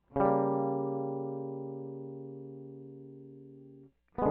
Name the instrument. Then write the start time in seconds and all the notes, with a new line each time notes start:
electric guitar
0.17 C#3 G3
0.26 A#3
4.19 G#3 B3